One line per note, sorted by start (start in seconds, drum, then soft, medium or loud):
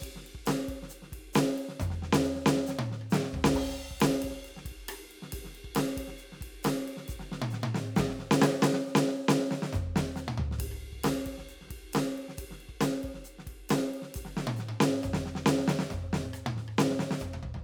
0.01 kick soft
0.01 hi-hat pedal medium
0.01 ride medium
0.09 kick soft
0.16 snare soft
0.27 ride medium
0.35 kick soft
0.46 snare loud
0.46 hi-hat pedal medium
0.46 ride loud
0.69 kick soft
0.69 ride medium
0.76 kick soft
0.83 snare soft
0.90 hi-hat pedal medium
0.90 ride medium
1.03 snare soft
1.13 kick soft
1.13 ride medium
1.19 kick soft
1.34 snare loud
1.34 hi-hat pedal medium
1.34 ride loud
1.59 ride medium
1.69 snare soft
1.80 kick medium
1.80 hi-hat pedal medium
1.80 mid tom loud
1.89 kick soft
1.89 snare soft
2.03 snare soft
2.13 snare loud
2.24 snare soft
2.24 hi-hat pedal medium
2.36 snare soft
2.47 snare loud
2.57 snare soft
2.67 snare medium
2.67 hi-hat pedal medium
2.79 high tom loud
2.92 snare soft
3.02 cross-stick soft
3.11 snare loud
3.11 hi-hat pedal medium
3.24 snare medium
3.33 kick soft
3.33 floor tom medium
3.45 snare loud
3.54 kick medium
3.54 hi-hat pedal medium
3.54 crash loud
3.69 snare soft
3.91 kick soft
3.97 kick soft
4.01 snare loud
4.01 hi-hat pedal medium
4.01 ride loud
4.10 snare soft
4.23 kick soft
4.23 ride loud
4.31 kick soft
4.31 snare soft
4.45 hi-hat pedal soft
4.45 ride medium
4.57 snare soft
4.66 kick soft
4.66 ride medium
4.72 kick soft
4.89 cross-stick medium
4.89 hi-hat pedal medium
4.89 ride loud
5.12 ride medium
5.23 snare soft
5.33 kick soft
5.33 hi-hat pedal soft
5.33 ride loud
5.41 kick soft
5.45 snare soft
5.56 ride medium
5.65 kick soft
5.70 kick soft
5.76 snare loud
5.76 hi-hat pedal medium
5.76 ride loud
5.97 kick soft
5.97 ride loud
6.04 kick soft
6.04 snare soft
6.18 hi-hat pedal soft
6.18 ride soft
6.33 snare soft
6.41 kick soft
6.41 ride medium
6.48 kick soft
6.64 snare loud
6.64 hi-hat pedal medium
6.64 ride loud
6.88 ride medium
6.98 snare soft
7.09 kick medium
7.09 hi-hat pedal medium
7.09 ride medium
7.17 kick soft
7.17 snare soft
7.32 snare medium
7.42 high tom loud
7.51 snare medium
7.51 hi-hat pedal soft
7.64 high tom loud
7.75 snare medium
7.86 cross-stick soft
7.96 kick soft
7.96 snare loud
7.96 hi-hat pedal medium
8.06 kick soft
8.06 snare soft
8.19 snare soft
8.32 snare loud
8.40 snare loud
8.40 hi-hat pedal soft
8.52 snare soft
8.63 snare loud
8.74 snare medium
8.88 snare soft
8.88 hi-hat pedal soft
8.96 snare loud
9.08 snare soft
9.29 snare loud
9.29 hi-hat pedal soft
9.40 snare soft
9.51 snare medium
9.63 snare medium
9.73 kick medium
9.73 hi-hat pedal medium
9.73 mid tom loud
9.89 kick soft
9.97 snare loud
10.17 snare medium
10.17 hi-hat pedal medium
10.29 high tom loud
10.38 floor tom loud
10.52 snare medium
10.59 kick medium
10.59 hi-hat pedal soft
10.59 ride loud
10.66 kick soft
10.71 kick soft
10.71 cross-stick soft
10.81 ride soft
10.93 kick soft
11.04 snare loud
11.04 hi-hat pedal soft
11.04 ride loud
11.27 kick soft
11.27 ride medium
11.33 kick soft
11.38 snare soft
11.49 hi-hat pedal soft
11.49 ride soft
11.62 snare soft
11.68 kick soft
11.68 snare soft
11.68 ride medium
11.93 snare loud
11.93 hi-hat pedal medium
11.93 ride loud
12.18 ride soft
12.29 snare soft
12.38 kick soft
12.38 hi-hat pedal medium
12.38 ride loud
12.45 kick soft
12.51 snare soft
12.61 ride soft
12.69 kick soft
12.81 snare loud
12.81 hi-hat pedal medium
12.81 ride medium
12.91 snare soft
13.04 kick soft
13.04 ride medium
13.11 kick soft
13.11 snare soft
13.25 hi-hat pedal medium
13.25 ride soft
13.39 snare soft
13.47 kick soft
13.47 ride medium
13.53 kick soft
13.70 snare loud
13.70 hi-hat pedal medium
13.70 ride loud
13.78 snare soft
13.94 ride medium
14.02 snare soft
14.15 kick soft
14.15 hi-hat pedal medium
14.15 ride loud
14.23 kick soft
14.23 snare soft
14.26 kick soft
14.37 snare medium
14.48 high tom loud
14.57 snare soft
14.57 hi-hat pedal medium
14.69 high tom medium
14.81 snare loud
14.95 snare soft
15.03 kick soft
15.03 hi-hat pedal medium
15.03 mid tom loud
15.12 kick soft
15.12 snare loud
15.26 snare soft
15.36 snare medium
15.47 snare loud
15.47 hi-hat pedal soft
15.59 snare medium
15.68 snare loud
15.79 snare medium
15.91 kick soft
15.91 hi-hat pedal soft
15.91 mid tom loud
16.00 kick soft
16.00 high tom soft
16.14 snare loud
16.21 high tom medium
16.34 cross-stick medium
16.34 hi-hat pedal medium
16.47 high tom loud
16.57 snare soft
16.69 cross-stick soft
16.78 snare loud
16.78 hi-hat pedal medium
16.91 snare medium
17.00 snare medium
17.11 snare medium
17.20 kick soft
17.20 hi-hat pedal medium
17.20 mid tom medium
17.27 kick soft
17.34 mid tom medium
17.43 kick soft
17.43 floor tom medium
17.51 kick soft
17.51 floor tom medium